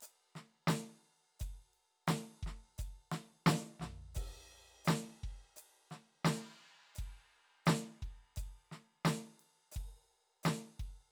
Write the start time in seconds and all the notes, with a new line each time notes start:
0.01 hi-hat pedal, ride
0.36 snare, ride
0.68 snare, hi-hat pedal, ride
1.40 kick, hi-hat pedal, ride
1.74 ride
2.08 snare, hi-hat pedal, ride
2.43 kick, snare, ride
2.78 kick, hi-hat pedal, ride
3.12 snare, ride
3.47 snare, hi-hat pedal, ride
3.80 snare, floor tom
4.15 kick, hi-hat pedal, crash
4.85 snare, hi-hat pedal, ride
5.24 kick, ride
5.56 hi-hat pedal, ride
5.91 snare, ride
6.25 snare, hi-hat pedal, ride
6.95 kick, hi-hat pedal, ride
7.66 snare, hi-hat pedal, ride
8.02 kick, ride
8.36 kick, hi-hat pedal, ride
8.72 snare, ride
9.05 snare, hi-hat pedal, ride
9.40 ride
9.72 hi-hat pedal, crash
9.76 kick
10.43 snare, hi-hat pedal, ride
10.80 kick, ride